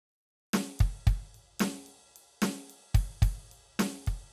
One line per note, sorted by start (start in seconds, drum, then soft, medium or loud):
0.53 snare loud
0.53 ride loud
0.79 kick loud
0.79 ride medium
1.07 kick loud
1.07 ride medium
1.34 ride soft
1.60 snare loud
1.60 ride loud
1.86 ride soft
2.16 ride medium
2.42 snare loud
2.42 ride loud
2.70 ride medium
2.94 kick loud
2.94 ride loud
3.22 kick loud
3.22 ride loud
3.51 ride soft
3.79 snare loud
3.79 ride loud
4.07 kick medium
4.07 ride medium